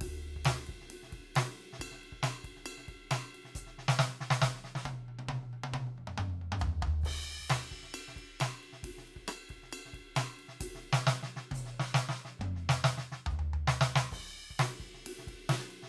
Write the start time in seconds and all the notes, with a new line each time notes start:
0.01 kick, hi-hat pedal, ride
0.19 kick
0.36 kick
0.43 kick, snare, ride
0.48 hi-hat pedal
0.67 kick, ride
0.75 kick
0.81 snare
0.90 hi-hat pedal, ride
1.03 snare
1.09 kick, snare, ride
1.19 kick
1.35 snare, hi-hat pedal, ride
1.61 ride
1.73 snare
1.80 kick, hi-hat pedal, ride bell
1.86 kick
1.92 snare
1.97 snare
2.04 ride
2.12 kick
2.23 snare, hi-hat pedal, ride bell
2.44 kick, ride
2.50 kick
2.57 snare
2.66 hi-hat pedal, ride bell
2.78 snare
2.84 kick, snare
2.89 ride
3.11 snare, hi-hat pedal, ride bell
3.35 ride
3.45 snare
3.55 kick, hi-hat pedal, ride bell
3.62 kick
3.67 snare
3.78 snare
3.88 snare
3.99 snare
4.09 snare
4.21 snare
4.31 snare
4.40 kick, snare, hi-hat pedal
4.47 cross-stick
4.55 snare
4.64 snare
4.75 snare
4.85 kick, high tom
4.91 kick
5.01 high tom
5.08 high tom
5.19 high tom
5.28 kick, hi-hat pedal, high tom
5.43 high tom
5.53 high tom
5.64 high tom
5.73 kick, hi-hat pedal
5.78 kick
5.87 high tom
5.98 mid tom
6.08 mid tom
6.18 kick, hi-hat pedal, mid tom
6.30 mid tom
6.42 mid tom
6.52 mid tom
6.60 hi-hat pedal, floor tom
6.82 kick, floor tom
7.02 kick, hi-hat pedal, crash
7.19 kick
7.40 kick
7.50 snare, hi-hat pedal, ride bell
7.58 snare
7.71 kick, ride
7.83 snare
7.94 hi-hat pedal, ride bell
8.08 snare
8.16 kick, ride
8.22 kick
8.39 snare, hi-hat pedal, ride bell
8.63 ride
8.73 snare
8.83 kick, hi-hat pedal, ride
8.90 kick
8.98 snare
9.08 ride
9.16 kick
9.28 cross-stick, hi-hat pedal, ride bell
9.50 kick, ride
9.63 snare
9.72 hi-hat pedal, ride bell
9.86 snare
9.94 kick, ride
10.00 kick
10.15 snare, hi-hat pedal, ride bell
10.39 ride
10.49 snare
10.61 kick, hi-hat pedal, ride
10.68 kick
10.75 snare
10.93 snare
11.07 snare
11.23 snare
11.37 snare
11.51 kick, hi-hat pedal, high tom
11.58 kick
11.66 snare
11.80 snare
11.94 snare
12.09 snare
12.25 snare
12.40 kick, mid tom
12.46 kick
12.49 kick
12.56 snare
12.69 snare
12.84 snare
12.98 snare, hi-hat pedal
13.12 snare
13.26 hi-hat pedal, floor tom
13.39 floor tom
13.54 floor tom
13.68 snare
13.81 snare
13.96 snare
14.12 kick, hi-hat pedal, crash
14.19 kick
14.22 kick
14.51 kick
14.56 kick, snare, ride
14.62 hi-hat pedal
14.80 kick, ride
14.94 snare
15.05 hi-hat pedal, ride
15.19 snare
15.27 kick, ride
15.34 kick
15.49 snare, hi-hat pedal, ride
15.71 ride
15.83 snare